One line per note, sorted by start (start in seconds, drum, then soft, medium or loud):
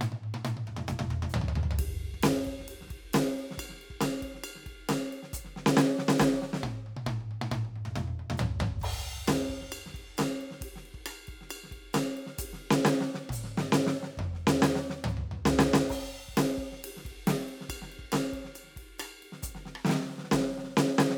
0.01 hi-hat pedal medium
0.01 high tom loud
0.12 high tom medium
0.24 high tom soft
0.34 high tom medium
0.42 kick soft
0.42 hi-hat pedal medium
0.42 high tom loud
0.57 high tom medium
0.66 kick soft
0.66 mid tom medium
0.77 mid tom loud
0.88 kick soft
0.88 hi-hat pedal medium
0.88 mid tom loud
0.99 mid tom loud
1.10 kick soft
1.10 mid tom medium
1.22 mid tom loud
1.30 hi-hat pedal medium
1.34 floor tom loud
1.42 floor tom loud
1.48 floor tom medium
1.56 floor tom loud
1.63 floor tom medium
1.71 floor tom medium
1.79 kick medium
1.79 hi-hat pedal soft
1.79 ride loud
1.97 kick soft
2.14 kick soft
2.21 kick soft
2.21 snare loud
2.21 ride loud
2.25 hi-hat pedal medium
2.45 kick soft
2.45 ride medium
2.53 kick soft
2.59 snare soft
2.68 hi-hat pedal medium
2.68 ride medium
2.81 snare soft
2.87 kick soft
2.87 snare soft
2.87 ride medium
2.97 kick soft
3.13 snare loud
3.13 hi-hat pedal medium
3.13 ride loud
3.39 ride soft
3.51 snare soft
3.57 kick soft
3.57 hi-hat pedal soft
3.57 ride bell loud
3.63 kick soft
3.69 snare soft
3.74 snare soft
3.81 ride soft
3.90 kick soft
4.01 snare loud
4.01 hi-hat pedal medium
4.01 ride bell loud
4.22 kick soft
4.22 ride medium
4.28 kick soft
4.34 snare soft
4.44 hi-hat pedal soft
4.44 ride bell loud
4.55 snare soft
4.62 kick soft
4.62 snare soft
4.66 ride soft
4.89 snare loud
4.89 hi-hat pedal soft
4.89 ride bell loud
5.13 ride medium
5.23 snare soft
5.33 kick soft
5.33 hi-hat pedal loud
5.33 ride bell medium
5.40 kick soft
5.45 snare soft
5.56 snare medium
5.66 snare loud
5.77 snare loud
5.87 snare soft
5.99 snare medium
6.08 snare loud
6.18 kick soft
6.18 snare loud
6.18 hi-hat pedal medium
6.25 cross-stick soft
6.33 snare soft
6.42 snare medium
6.53 snare medium
6.63 kick soft
6.63 high tom loud
6.68 kick soft
6.79 high tom soft
6.86 high tom soft
6.97 high tom loud
7.06 kick soft
7.06 hi-hat pedal soft
7.06 high tom loud
7.21 high tom soft
7.31 high tom soft
7.42 high tom loud
7.51 kick soft
7.51 hi-hat pedal soft
7.56 kick soft
7.65 high tom soft
7.76 mid tom soft
7.85 mid tom medium
7.95 kick soft
7.95 hi-hat pedal soft
7.95 mid tom loud
8.08 mid tom soft
8.19 mid tom soft
8.30 mid tom loud
8.37 hi-hat pedal medium
8.37 floor tom loud
8.60 kick soft
8.60 floor tom loud
8.79 kick medium
8.79 hi-hat pedal soft
8.79 crash loud
8.97 kick soft
9.18 kick soft
9.28 snare loud
9.28 hi-hat pedal medium
9.28 ride bell loud
9.36 snare soft
9.49 kick soft
9.49 ride soft
9.61 snare soft
9.72 hi-hat pedal soft
9.72 ride bell loud
9.86 snare soft
9.94 kick soft
9.94 ride soft
10.00 kick soft
10.17 snare loud
10.17 hi-hat pedal medium
10.17 ride bell loud
10.41 ride soft
10.51 snare soft
10.61 kick soft
10.61 hi-hat pedal soft
10.61 ride loud
10.68 kick soft
10.76 snare soft
10.85 ride soft
10.94 kick soft
11.06 cross-stick medium
11.06 hi-hat pedal soft
11.06 ride bell loud
11.27 kick soft
11.27 ride medium
11.41 snare soft
11.49 hi-hat pedal medium
11.49 ride bell loud
11.64 snare soft
11.71 kick soft
11.71 ride soft
11.77 kick soft
11.93 snare loud
11.93 hi-hat pedal medium
11.93 ride bell loud
12.17 ride soft
12.26 snare soft
12.38 kick medium
12.38 hi-hat pedal loud
12.38 ride loud
12.46 kick soft
12.53 snare soft
12.71 snare loud
12.85 snare loud
13.01 snare medium
13.14 snare medium
13.29 kick soft
13.29 hi-hat pedal loud
13.29 high tom loud
13.36 kick soft
13.44 snare soft
13.58 snare loud
13.72 snare loud
13.87 snare medium
14.03 snare medium
14.17 kick soft
14.17 mid tom loud
14.24 kick soft
14.27 kick soft
14.34 snare soft
14.47 snare loud
14.62 snare loud
14.76 snare medium
14.76 hi-hat pedal soft
14.90 snare medium
15.04 hi-hat pedal soft
15.04 floor tom loud
15.17 floor tom medium
15.31 floor tom medium
15.45 snare loud
15.59 snare loud
15.74 snare loud
15.90 kick soft
15.90 hi-hat pedal medium
15.90 crash medium
15.97 kick soft
16.00 kick soft
16.28 kick soft
16.34 kick soft
16.34 snare loud
16.34 ride loud
16.40 hi-hat pedal medium
16.58 kick soft
16.58 ride soft
16.72 snare soft
16.83 hi-hat pedal soft
16.83 ride loud
16.97 snare soft
17.05 kick soft
17.05 ride medium
17.11 kick soft
17.27 snare loud
17.27 hi-hat pedal medium
17.27 ride loud
17.49 ride soft
17.61 snare soft
17.69 kick soft
17.69 hi-hat pedal soft
17.69 ride bell loud
17.76 kick soft
17.82 snare soft
17.92 ride soft
17.99 kick soft
18.04 kick soft
18.12 snare loud
18.12 hi-hat pedal medium
18.12 ride bell loud
18.33 kick soft
18.33 ride soft
18.38 kick soft
18.44 snare soft
18.55 hi-hat pedal medium
18.55 ride bell medium
18.63 snare soft
18.67 snare soft
18.71 snare soft
18.76 kick soft
18.76 ride medium
18.99 cross-stick medium
18.99 hi-hat pedal medium
18.99 ride bell loud
19.23 ride medium
19.32 snare soft
19.43 kick medium
19.43 hi-hat pedal loud
19.43 ride bell medium
19.50 kick soft
19.55 snare soft
19.66 snare soft
19.75 cross-stick medium
19.85 snare loud
19.89 snare loud
19.95 snare medium
20.00 snare medium
20.05 snare soft
20.10 snare soft
20.15 snare soft
20.18 snare medium
20.24 snare soft
20.31 kick soft
20.31 snare loud
20.41 snare medium
20.46 snare soft
20.51 snare soft
20.58 snare soft
20.63 snare soft
20.69 snare soft
20.74 kick soft
20.74 snare soft
20.77 snare loud
20.87 snare soft
20.98 snare loud
21.10 snare medium